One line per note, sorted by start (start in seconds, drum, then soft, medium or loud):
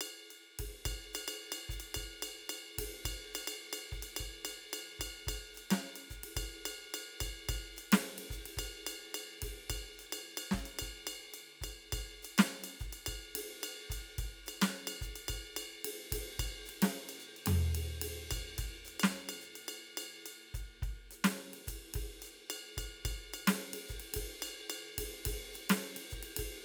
0.02 hi-hat pedal soft
0.02 ride bell loud
0.30 ride bell medium
0.58 kick soft
0.58 hi-hat pedal soft
0.58 ride loud
0.85 kick soft
0.85 ride bell loud
1.13 hi-hat pedal medium
1.13 ride bell loud
1.28 ride bell loud
1.52 ride bell loud
1.69 kick soft
1.69 hi-hat pedal medium
1.80 ride bell medium
1.94 kick soft
1.94 ride bell loud
2.22 hi-hat pedal soft
2.22 ride bell loud
2.49 ride bell loud
2.78 kick soft
2.78 hi-hat pedal medium
2.78 ride loud
3.05 kick soft
3.05 ride bell loud
3.10 kick soft
3.33 hi-hat pedal soft
3.33 ride bell loud
3.47 ride bell loud
3.73 ride bell loud
3.92 kick soft
3.92 hi-hat pedal soft
4.02 ride bell medium
4.16 kick soft
4.16 ride bell loud
4.45 hi-hat pedal medium
4.45 ride bell loud
4.73 ride bell loud
4.99 kick soft
4.99 hi-hat pedal medium
4.99 ride bell loud
5.27 kick soft
5.27 ride bell loud
5.54 hi-hat pedal soft
5.54 ride bell medium
5.70 snare loud
5.70 ride bell loud
5.95 ride bell medium
6.10 kick soft
6.10 hi-hat pedal medium
6.23 ride medium
6.36 kick soft
6.36 ride bell loud
6.65 hi-hat pedal medium
6.65 ride bell loud
6.94 ride bell loud
7.20 kick soft
7.20 hi-hat pedal medium
7.20 ride bell loud
7.48 kick soft
7.48 ride bell loud
7.76 hi-hat pedal medium
7.76 ride bell medium
7.92 kick soft
7.92 snare loud
7.92 closed hi-hat soft
7.92 ride loud
8.18 ride medium
8.30 kick soft
8.30 hi-hat pedal medium
8.45 ride medium
8.57 kick soft
8.57 ride bell loud
8.86 hi-hat pedal medium
8.86 ride bell loud
9.14 ride bell loud
9.42 kick soft
9.42 hi-hat pedal medium
9.42 ride loud
9.70 kick soft
9.70 ride bell loud
9.77 kick soft
9.99 hi-hat pedal medium
9.99 ride bell medium
10.12 ride bell loud
10.37 ride bell loud
10.51 kick soft
10.51 snare medium
10.56 hi-hat pedal medium
10.65 ride bell medium
10.79 kick soft
10.79 ride bell loud
11.07 hi-hat pedal soft
11.07 ride bell loud
11.34 ride bell medium
11.61 kick soft
11.61 hi-hat pedal soft
11.61 ride bell loud
11.92 kick soft
11.92 ride bell loud
12.22 hi-hat pedal medium
12.22 ride bell medium
12.38 snare loud
12.38 ride bell loud
12.64 ride bell loud
12.79 kick soft
12.79 hi-hat pedal medium
12.92 ride bell medium
13.06 kick soft
13.06 ride bell loud
13.35 hi-hat pedal medium
13.35 ride loud
13.63 ride bell loud
13.90 kick soft
13.90 hi-hat pedal medium
13.90 ride bell medium
14.18 kick soft
14.18 ride bell medium
14.27 kick soft
14.46 hi-hat pedal medium
14.46 ride bell loud
14.61 snare loud
14.61 ride bell loud
14.87 ride bell loud
15.01 kick soft
15.01 hi-hat pedal medium
15.15 ride bell medium
15.28 kick soft
15.28 ride bell loud
15.34 kick soft
15.56 hi-hat pedal medium
15.56 ride bell loud
15.84 ride loud
16.11 kick soft
16.11 hi-hat pedal medium
16.11 ride loud
16.17 kick soft
16.39 kick soft
16.39 ride bell loud
16.48 kick soft
16.65 hi-hat pedal medium
16.65 ride medium
16.82 snare loud
16.82 ride loud
17.09 ride bell medium
17.19 hi-hat pedal medium
17.36 ride bell soft
17.46 floor tom loud
17.46 ride loud
17.74 hi-hat pedal soft
17.74 ride loud
18.01 ride loud
18.31 kick soft
18.31 hi-hat pedal medium
18.31 ride bell loud
18.36 kick soft
18.58 kick soft
18.58 ride bell loud
18.67 kick soft
18.84 hi-hat pedal medium
18.84 ride bell medium
18.99 snare loud
18.99 ride bell loud
19.29 ride bell loud
19.41 hi-hat pedal medium
19.55 ride bell medium
19.68 ride bell loud
19.97 hi-hat pedal medium
19.97 ride bell loud
20.26 ride bell medium
20.54 kick soft
20.54 hi-hat pedal medium
20.54 ride bell soft
20.82 kick soft
20.82 ride bell soft
20.92 kick soft
21.11 hi-hat pedal medium
21.11 ride medium
21.24 snare loud
21.24 ride loud
21.53 ride medium
21.67 kick soft
21.67 hi-hat pedal medium
21.67 ride medium
21.94 kick soft
21.94 ride loud
22.01 kick soft
22.22 hi-hat pedal medium
22.22 ride bell medium
22.50 ride bell loud
22.77 kick soft
22.77 hi-hat pedal medium
22.77 ride bell loud
23.05 kick soft
23.05 ride bell loud
23.10 kick soft
23.33 hi-hat pedal medium
23.33 ride bell loud
23.47 snare loud
23.47 ride loud
23.73 ride loud
23.88 kick soft
23.88 hi-hat pedal medium
24.00 ride medium
24.14 kick soft
24.14 closed hi-hat soft
24.14 ride loud
24.42 hi-hat pedal medium
24.42 ride bell loud
24.70 ride bell loud
24.98 kick soft
24.98 hi-hat pedal medium
24.98 ride loud
25.25 kick soft
25.25 ride loud
25.31 kick soft
25.53 hi-hat pedal medium
25.53 ride medium
25.69 snare loud
25.69 ride loud
25.96 snare soft
25.96 ride medium
26.02 snare soft
26.10 kick soft
26.10 hi-hat pedal medium
26.23 ride medium
26.36 kick soft
26.36 ride loud